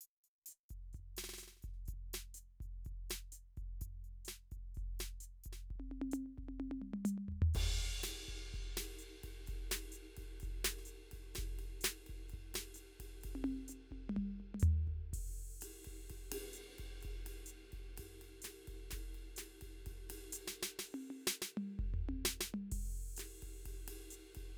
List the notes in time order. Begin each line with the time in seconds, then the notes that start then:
0.04 closed hi-hat
0.24 closed hi-hat
0.46 open hi-hat, hi-hat pedal
0.69 closed hi-hat, kick
0.93 kick, hi-hat pedal
1.00 kick
1.16 closed hi-hat, snare
1.24 snare
1.29 snare
1.33 snare
1.38 closed hi-hat, snare, hi-hat pedal
1.43 snare
1.47 snare
1.52 snare
1.57 snare
1.61 closed hi-hat, kick, snare
1.64 snare
1.68 kick, snare
1.73 snare
1.85 closed hi-hat, kick, hi-hat pedal
1.94 kick
2.13 closed hi-hat, snare
2.34 hi-hat pedal
2.39 closed hi-hat
2.60 closed hi-hat, kick
2.65 kick
2.85 closed hi-hat, kick
2.91 kick
3.10 closed hi-hat, snare
3.32 closed hi-hat, hi-hat pedal
3.57 closed hi-hat, kick
3.62 kick
3.81 closed hi-hat, kick
3.87 kick
4.04 closed hi-hat
4.25 snare, hi-hat pedal
4.29 closed hi-hat
4.51 closed hi-hat, kick
4.57 kick
4.74 open hi-hat, kick
4.82 kick
4.99 closed hi-hat, snare
5.20 hi-hat pedal
5.44 closed hi-hat, kick
5.52 snare
5.70 kick
5.75 kick
5.80 high tom
5.91 high tom
6.01 high tom
6.11 hi-hat pedal, high tom
6.26 high tom
6.38 kick, high tom
6.43 kick
6.48 high tom
6.60 high tom
6.71 high tom
6.81 mid tom
6.93 mid tom
7.05 hi-hat pedal, mid tom
7.18 mid tom
7.28 kick, floor tom
7.42 floor tom
7.54 kick, hi-hat pedal, ride
7.62 kick
8.03 snare, hi-hat pedal, ride
8.28 kick
8.53 kick, hi-hat pedal
8.59 kick
8.77 snare, ride
8.98 hi-hat pedal, ride
9.23 kick, ride
9.46 kick, hi-hat pedal, ride
9.54 kick
9.71 snare, ride
9.92 hi-hat pedal, ride
10.17 kick, ride
10.23 kick
10.40 kick, hi-hat pedal, ride
10.48 kick
10.64 snare, ride
10.78 snare
10.85 hi-hat pedal, ride
11.11 kick, ride
11.34 snare, hi-hat pedal, ride
11.38 kick
11.44 kick
11.59 ride
11.81 snare, hi-hat pedal, ride
12.06 kick, ride
12.28 hi-hat pedal, ride
12.33 kick
12.39 kick
12.54 snare, ride
12.74 hi-hat pedal, ride
13.00 kick, ride
13.21 kick, hi-hat pedal, ride
13.35 high tom
13.44 high tom
13.68 hi-hat pedal, high tom
13.91 kick, high tom
14.09 mid tom
14.16 kick, mid tom
14.40 mid tom
14.54 mid tom
14.59 floor tom, hi-hat pedal
14.87 kick
15.13 kick, crash
15.19 kick
15.61 hi-hat pedal, ride
15.84 kick, ride
16.10 kick, ride
16.32 ride
16.53 hi-hat pedal, ride
16.60 snare
16.78 kick, ride
17.00 hi-hat pedal, ride
17.05 kick
17.25 snare, ride
17.46 hi-hat pedal, ride
17.72 kick, ride
17.96 kick, snare, ride
18.21 ride
18.42 snare, hi-hat pedal, ride
18.67 kick, ride
18.90 kick, snare, ride
18.98 kick
19.14 ride
19.36 snare, hi-hat pedal, ride
19.61 kick, ride
19.86 kick, ride
19.92 kick
20.09 snare, ride
20.32 hi-hat pedal, ride
20.47 snare
20.63 snare
20.79 snare, hi-hat pedal
20.94 high tom
21.10 high tom
21.27 snare
21.42 snare
21.57 mid tom
21.79 kick
21.85 kick
21.94 floor tom
22.09 high tom
22.25 snare
22.40 snare
22.54 mid tom
22.71 kick, crash
23.16 snare, hi-hat pedal, ride
23.42 kick, ride
23.65 kick, ride
23.70 snare
23.88 snare, ride
24.10 hi-hat pedal, ride
24.35 kick, ride